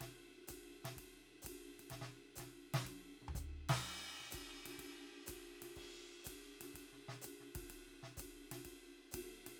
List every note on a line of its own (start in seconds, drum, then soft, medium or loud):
0.01 kick soft
0.01 snare soft
0.01 ride medium
0.11 snare soft
0.48 kick soft
0.48 hi-hat pedal medium
0.48 ride medium
0.85 snare soft
0.85 ride medium
0.97 kick soft
0.97 ride medium
1.43 kick soft
1.43 hi-hat pedal medium
1.47 ride medium
1.80 ride soft
1.89 kick soft
1.89 snare soft
1.89 hi-hat pedal soft
1.89 ride medium
2.02 snare soft
2.36 kick soft
2.36 snare soft
2.36 hi-hat pedal medium
2.36 ride medium
2.74 snare medium
2.74 ride medium
2.85 kick soft
2.85 ride medium
3.22 high tom soft
3.29 floor tom medium
3.35 kick soft
3.35 hi-hat pedal medium
3.69 snare medium
3.69 crash medium
3.82 hi-hat pedal soft
4.20 snare soft
4.25 snare soft
4.31 kick soft
4.31 hi-hat pedal medium
4.31 ride medium
4.66 snare soft
4.66 ride medium
4.79 kick soft
4.79 ride medium
5.18 snare soft
5.21 snare soft
5.24 snare soft
5.24 hi-hat pedal medium
5.29 kick soft
5.29 ride medium
5.62 snare soft
5.62 ride medium
5.76 kick soft
5.76 hi-hat pedal soft
5.76 ride medium
6.25 kick soft
6.25 hi-hat pedal medium
6.25 ride medium
6.61 snare soft
6.61 ride medium
6.75 kick soft
6.75 ride medium
6.93 snare soft
7.09 snare soft
7.22 hi-hat pedal medium
7.22 ride medium
7.26 kick soft
7.41 snare soft
7.56 kick soft
7.56 ride medium
7.69 hi-hat pedal soft
7.69 ride medium
7.87 snare soft
8.03 snare soft
8.18 kick soft
8.18 hi-hat pedal medium
8.18 ride medium
8.52 snare soft
8.52 ride medium
8.65 kick soft
8.65 ride medium
9.12 kick soft
9.12 hi-hat pedal medium
9.12 ride loud
9.46 snare soft
9.46 ride medium